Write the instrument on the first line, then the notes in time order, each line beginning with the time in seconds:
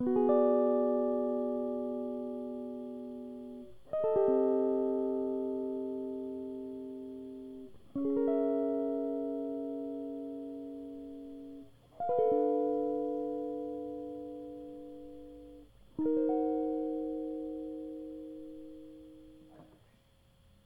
electric guitar
0.00 B3
0.08 F#4
0.16 G#4
0.29 D5
3.94 D#5
4.04 A4
4.16 G4
4.27 C4
7.95 C#4
8.17 A#4
8.28 E5
12.01 F5
12.09 B4
12.19 A4
12.32 D4
15.99 D#4
16.05 A#4
16.17 C5
16.29 F#5